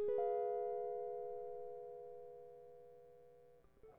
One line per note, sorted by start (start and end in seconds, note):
0.00 1.78 G#4
0.09 3.35 B4
0.21 2.56 F5